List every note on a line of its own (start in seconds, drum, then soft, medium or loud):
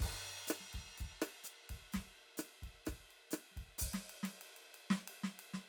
0.01 kick medium
0.01 snare soft
0.01 crash medium
0.13 kick soft
0.13 cross-stick soft
0.48 cross-stick medium
0.48 hi-hat pedal loud
0.48 ride medium
0.61 snare soft
0.74 kick soft
0.74 snare soft
0.74 ride soft
0.80 kick soft
0.80 snare soft
0.89 snare soft
0.93 snare soft
0.98 kick soft
0.98 hi-hat pedal soft
0.98 ride soft
1.06 kick soft
1.22 cross-stick medium
1.22 ride medium
1.45 hi-hat pedal medium
1.70 kick soft
1.70 ride medium
1.76 kick soft
1.93 kick soft
1.93 snare medium
1.93 hi-hat pedal soft
1.93 ride medium
2.01 kick soft
2.38 cross-stick medium
2.38 hi-hat pedal medium
2.38 ride medium
2.63 kick soft
2.63 ride soft
2.68 kick soft
2.86 kick soft
2.86 cross-stick medium
2.86 hi-hat pedal soft
2.86 ride medium
2.94 kick soft
3.11 ride soft
3.31 cross-stick medium
3.31 hi-hat pedal medium
3.31 ride medium
3.52 snare soft
3.57 kick soft
3.57 ride soft
3.63 kick soft
3.79 kick soft
3.79 hi-hat pedal loud
3.79 ride medium
3.88 kick soft
3.94 snare medium
3.94 ride medium
4.10 ride medium
4.24 snare medium
4.24 ride medium
4.42 ride medium
4.57 ride medium
4.75 ride medium
4.91 snare loud
5.08 ride medium
5.24 snare medium
5.40 ride medium
5.54 snare medium